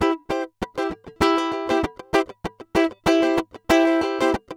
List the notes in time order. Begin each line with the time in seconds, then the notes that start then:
0.02 E4 G4 C5
0.31 E4 G4 C5
0.79 E4 G4 C5
1.23 E4 G4
1.37 E4 G4
1.52 E4 G4
1.70 E4 G4 C5
2.14 E4 G4 C5
2.76 E4 G4 C5
3.07 E4 G4 C5
3.22 E4 G4 C5
3.70 E4 G4 C5
3.86 G4 C5
4.02 E4 G4 C5
4.22 E4 G4 C5